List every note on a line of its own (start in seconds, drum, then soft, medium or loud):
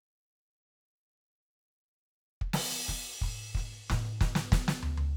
2.41 kick medium
2.53 snare loud
2.53 crash loud
2.70 snare soft
2.88 kick soft
2.88 snare medium
3.22 kick medium
3.22 mid tom medium
3.55 kick medium
3.55 snare medium
3.55 mid tom medium
3.90 kick medium
3.90 snare loud
3.90 mid tom loud
4.04 snare soft
4.21 kick medium
4.21 snare loud
4.35 snare loud
4.52 kick loud
4.52 snare loud
4.68 snare loud
4.80 kick soft
4.80 floor tom loud
4.98 floor tom loud